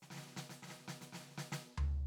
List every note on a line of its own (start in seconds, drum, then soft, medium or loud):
0.00 snare soft
0.00 hi-hat pedal soft
0.10 snare soft
0.14 snare soft
0.17 snare soft
0.21 snare soft
0.27 snare soft
0.31 snare soft
0.36 snare medium
0.49 snare soft
0.49 hi-hat pedal soft
0.62 snare soft
0.66 snare soft
0.70 snare soft
0.74 snare soft
0.79 snare soft
0.82 snare soft
0.88 snare medium
1.01 snare soft
1.01 hi-hat pedal soft
1.12 snare soft
1.14 snare soft
1.21 snare soft
1.26 snare soft
1.30 snare soft
1.34 snare soft
1.38 snare medium
1.52 snare medium
1.52 hi-hat pedal soft
1.78 floor tom loud